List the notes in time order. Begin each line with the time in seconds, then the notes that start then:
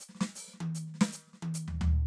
0.00 hi-hat pedal
0.09 snare
0.15 snare
0.21 snare
0.35 hi-hat pedal
0.48 snare
0.54 snare
0.60 high tom
0.75 hi-hat pedal
0.87 snare
0.94 snare
1.01 snare
1.12 hi-hat pedal
1.27 snare
1.33 snare
1.42 high tom
1.54 hi-hat pedal
1.68 floor tom
1.81 floor tom